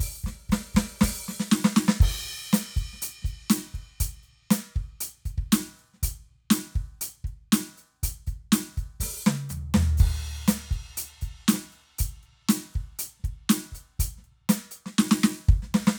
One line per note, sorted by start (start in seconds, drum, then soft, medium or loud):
0.01 open hi-hat loud
0.01 kick medium
0.25 open hi-hat soft
0.25 kick soft
0.25 snare soft
0.50 open hi-hat medium
0.50 kick soft
0.50 snare loud
0.76 open hi-hat medium
0.76 kick soft
0.76 snare loud
1.02 open hi-hat loud
1.02 kick medium
1.02 snare loud
1.29 snare medium
1.41 snare medium
1.53 snare loud
1.65 snare loud
1.77 snare loud
1.89 snare loud
2.01 kick loud
2.01 hi-hat pedal soft
2.01 crash loud
2.54 closed hi-hat loud
2.54 snare loud
2.77 closed hi-hat soft
2.77 kick medium
2.94 snare soft
3.03 closed hi-hat loud
3.23 closed hi-hat soft
3.23 kick soft
3.23 snare soft
3.51 closed hi-hat loud
3.51 snare loud
3.75 kick soft
3.75 closed hi-hat soft
4.01 closed hi-hat loud
4.01 kick medium
4.24 closed hi-hat soft
4.52 closed hi-hat loud
4.52 snare loud
4.77 kick medium
5.02 closed hi-hat loud
5.26 closed hi-hat soft
5.26 kick soft
5.39 kick soft
5.53 closed hi-hat loud
5.53 snare loud
5.80 closed hi-hat soft
5.95 snare soft
6.04 closed hi-hat loud
6.04 kick medium
6.51 closed hi-hat loud
6.51 snare loud
6.58 cross-stick soft
6.76 kick medium
6.76 closed hi-hat soft
7.02 closed hi-hat loud
7.25 kick soft
7.25 closed hi-hat soft
7.53 closed hi-hat loud
7.53 snare loud
7.79 closed hi-hat soft
8.04 closed hi-hat loud
8.04 kick soft
8.28 closed hi-hat soft
8.28 kick soft
8.53 closed hi-hat loud
8.53 snare loud
8.78 closed hi-hat soft
8.78 kick soft
9.01 open hi-hat loud
9.01 kick soft
9.01 snare soft
9.27 snare loud
9.27 hi-hat pedal soft
9.27 mid tom loud
9.50 floor tom medium
9.50 hi-hat pedal loud
9.75 snare loud
9.75 floor tom loud
9.98 kick medium
9.98 hi-hat pedal medium
9.98 crash medium
10.49 closed hi-hat loud
10.49 snare loud
10.72 kick medium
10.72 closed hi-hat soft
10.98 closed hi-hat loud
11.22 closed hi-hat soft
11.22 kick soft
11.49 closed hi-hat loud
11.49 snare loud
11.54 snare medium
11.73 closed hi-hat soft
12.00 closed hi-hat loud
12.00 kick medium
12.24 closed hi-hat soft
12.50 closed hi-hat loud
12.50 snare loud
12.75 kick soft
12.75 closed hi-hat soft
13.00 closed hi-hat loud
13.20 snare soft
13.25 kick soft
13.25 closed hi-hat soft
13.50 closed hi-hat loud
13.50 snare loud
13.73 closed hi-hat soft
13.73 kick soft
14.00 closed hi-hat loud
14.00 kick medium
14.19 snare soft
14.25 closed hi-hat soft
14.50 closed hi-hat loud
14.50 snare loud
14.72 closed hi-hat medium
14.87 snare medium
14.99 snare loud
15.12 snare loud
15.25 snare loud
15.50 kick loud
15.63 snare soft
15.75 snare loud
15.88 snare loud